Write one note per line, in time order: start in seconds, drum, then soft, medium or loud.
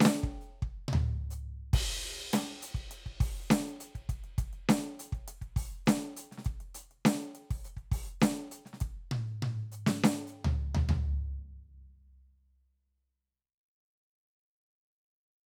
0.01 snare loud
0.06 snare loud
0.24 kick medium
0.41 hi-hat pedal soft
0.63 kick medium
0.89 high tom loud
0.93 floor tom loud
1.31 hi-hat pedal medium
1.74 kick medium
1.74 crash loud
1.74 ride loud
2.06 closed hi-hat soft
2.18 closed hi-hat soft
2.33 snare loud
2.33 closed hi-hat loud
2.49 closed hi-hat soft
2.63 closed hi-hat loud
2.75 kick medium
2.75 closed hi-hat soft
2.91 closed hi-hat medium
3.06 kick soft
3.06 closed hi-hat soft
3.21 open hi-hat medium
3.21 kick medium
3.51 snare loud
3.51 closed hi-hat medium
3.51 hi-hat pedal medium
3.56 cross-stick soft
3.67 closed hi-hat soft
3.81 closed hi-hat medium
3.95 kick soft
3.95 closed hi-hat soft
4.09 kick medium
4.09 closed hi-hat medium
4.24 closed hi-hat soft
4.38 kick medium
4.38 closed hi-hat medium
4.53 closed hi-hat soft
4.69 snare loud
4.69 closed hi-hat medium
4.84 closed hi-hat soft
5.00 closed hi-hat medium
5.13 kick medium
5.13 closed hi-hat soft
5.28 closed hi-hat medium
5.42 kick soft
5.42 closed hi-hat soft
5.57 open hi-hat medium
5.57 kick medium
5.86 snare loud
5.86 closed hi-hat medium
5.86 hi-hat pedal soft
6.03 closed hi-hat soft
6.17 closed hi-hat loud
6.32 snare soft
6.32 closed hi-hat soft
6.38 snare soft
6.45 kick medium
6.45 closed hi-hat medium
6.61 closed hi-hat soft
6.75 closed hi-hat loud
6.91 closed hi-hat soft
7.06 snare loud
7.06 closed hi-hat medium
7.11 snare soft
7.21 closed hi-hat soft
7.35 closed hi-hat medium
7.51 kick medium
7.51 open hi-hat medium
7.65 hi-hat pedal medium
7.77 kick soft
7.77 closed hi-hat soft
7.92 open hi-hat medium
7.92 kick medium
8.21 snare loud
8.21 closed hi-hat medium
8.21 hi-hat pedal soft
8.38 closed hi-hat soft
8.52 closed hi-hat medium
8.66 snare soft
8.66 closed hi-hat soft
8.73 snare soft
8.81 kick medium
8.81 closed hi-hat medium
9.12 high tom loud
9.27 snare soft
9.43 high tom loud
9.58 snare soft
9.72 hi-hat pedal medium
9.87 snare loud
10.04 snare loud
10.27 hi-hat pedal medium
10.45 floor tom loud
10.75 floor tom loud
10.89 floor tom loud